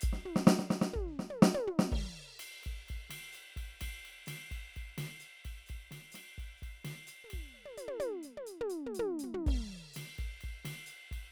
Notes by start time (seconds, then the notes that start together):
0.01 kick, hi-hat pedal, ride
0.10 kick, snare
0.25 floor tom
0.36 snare
0.47 snare
0.59 snare
0.71 snare
0.82 snare
0.93 kick, mid tom
1.01 kick
1.06 snare
1.19 snare
1.30 high tom
1.42 snare
1.54 high tom
1.67 floor tom
1.79 snare
1.92 kick, snare, crash
1.98 kick
2.39 hi-hat pedal, ride
2.63 kick, ride
2.87 kick, hi-hat pedal, ride
2.95 kick
3.10 snare, ride
3.33 hi-hat pedal, ride
3.57 kick, ride
3.80 kick, snare, hi-hat pedal, ride
3.87 kick
4.05 ride
4.26 snare, hi-hat pedal, ride
4.51 kick, ride
4.73 kick, hi-hat pedal, ride
4.98 snare, ride
5.20 hi-hat pedal, ride
5.45 kick, ride
5.66 kick, hi-hat pedal, ride
5.75 kick
5.91 snare, ride
6.12 snare, hi-hat pedal, ride
6.38 kick, ride
6.57 hi-hat pedal
6.62 kick, ride
6.85 snare, ride
7.07 hi-hat pedal, ride
7.24 mid tom
7.30 kick, ride
7.38 kick
7.54 high tom
7.65 high tom
7.77 hi-hat pedal, high tom
7.88 high tom
8.00 hi-hat pedal, high tom
8.23 hi-hat pedal, high tom
8.37 high tom
8.47 hi-hat pedal
8.61 mid tom
8.70 hi-hat pedal
8.86 mid tom
8.95 hi-hat pedal
8.99 mid tom
9.19 hi-hat pedal
9.23 floor tom
9.34 floor tom
9.47 kick, hi-hat pedal, crash
9.54 kick
9.94 snare, hi-hat pedal, ride
10.18 kick, ride
10.24 kick
10.40 kick, hi-hat pedal, ride
10.49 kick
10.65 snare, ride
10.86 hi-hat pedal, ride
11.12 kick, ride
11.16 kick